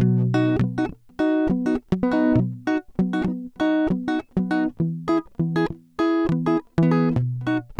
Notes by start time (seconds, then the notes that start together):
0.01 B2 F#3
0.35 D#4 F#4
0.61 B2 F#3 B3
0.79 D#4 F#4
1.20 D#4 F#4
1.49 F#3 B3
1.67 D#4 F#4
1.93 F#3
2.04 B3
2.12 D#4 F#4
2.37 B2
2.41 F#3
2.68 D#4 F#4
3.00 F#3 B3
3.14 E4 F#4
3.25 F#3
3.30 B3
3.60 D#4 F#4
3.92 F#3 B3
4.09 D#4 F#4
4.37 F#3 B3
4.51 D#4 F#4
4.80 E3 B3
5.09 E4 G#4
5.40 E3 B3
5.57 E4 G#4
5.71 E3
6.00 E4 G#4
6.30 E3 B3
6.47 E4 G#4
6.79 E3
6.84 B3
6.92 E4 G#4
7.17 B2
7.42 B3
7.47 D#4 F#4